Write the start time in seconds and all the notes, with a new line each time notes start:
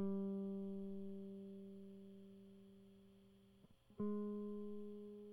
0.00 G3
4.00 G#3